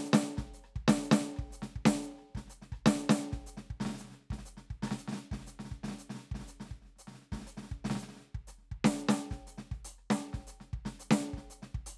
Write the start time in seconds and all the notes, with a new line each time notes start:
0.01 snare, hi-hat pedal
0.13 snare
0.21 snare
0.27 snare
0.37 kick, snare
0.50 snare, hi-hat pedal
0.64 cross-stick
0.74 kick, cross-stick, snare
0.88 snare
0.98 cross-stick, snare
1.03 hi-hat pedal
1.11 snare
1.16 cross-stick
1.25 cross-stick
1.36 kick, cross-stick
1.50 snare, hi-hat pedal
1.62 snare
1.73 kick, snare
1.85 snare
1.98 snare
1.99 snare, hi-hat pedal
2.18 cross-stick
2.35 kick, snare
2.47 cross-stick, snare, hi-hat pedal
2.62 snare
2.72 kick, cross-stick
2.86 snare
2.97 snare, hi-hat pedal
3.09 snare
3.14 cross-stick
3.32 kick, snare
3.43 snare, hi-hat pedal
3.47 snare
3.57 snare
3.65 snare
3.70 kick, snare
3.80 snare
3.85 snare
3.89 snare
3.94 snare
3.98 snare, hi-hat pedal
4.04 snare
4.06 snare
4.08 snare
4.09 snare
4.14 cross-stick
4.20 snare
4.30 kick, snare
4.38 snare
4.45 snare, hi-hat pedal
4.57 snare
4.70 kick, snare
4.82 snare
4.87 cross-stick, snare
4.96 cross-stick, hi-hat pedal
5.08 snare
5.12 snare
5.15 snare
5.31 kick, snare
5.37 snare
5.41 snare
5.47 snare, hi-hat pedal
5.59 snare
5.64 snare
5.70 kick, snare
5.83 snare
5.88 snare
5.91 snare
5.97 snare, hi-hat pedal
6.09 snare
6.14 snare
6.18 snare
6.31 kick, snare
6.39 snare
6.42 snare
6.47 cross-stick, hi-hat pedal
6.60 snare
6.65 snare
6.69 kick, snare
6.74 snare
6.81 snare
6.84 snare
6.96 snare, hi-hat pedal, crash
7.07 snare
7.11 snare
7.14 snare
7.21 snare
7.32 kick, snare
7.36 snare
7.40 snare
7.44 cross-stick, snare, hi-hat pedal
7.57 snare
7.62 snare
7.67 snare
7.71 kick, snare
7.84 snare
7.90 snare
7.95 snare, hi-hat pedal
8.02 snare
8.08 snare
8.16 snare
8.20 snare
8.28 snare
8.31 kick, snare
8.36 snare
8.47 cross-stick, snare, hi-hat pedal
8.61 snare
8.71 kick, cross-stick
8.84 snare
8.94 snare, hi-hat pedal
9.09 snare
9.13 cross-stick
9.31 kick, snare
9.45 snare
9.47 snare, hi-hat pedal
9.58 snare
9.71 kick, snare
9.85 closed hi-hat
9.98 cross-stick
10.10 snare
10.16 cross-stick
10.24 snare
10.33 kick, snare
10.39 snare
10.47 cross-stick, hi-hat pedal
10.60 snare
10.73 kick, cross-stick
10.85 snare
10.98 cross-stick, snare, hi-hat pedal
11.11 snare
11.25 snare
11.33 kick, snare
11.49 snare, hi-hat pedal
11.62 snare
11.73 kick, cross-stick, snare
11.86 open hi-hat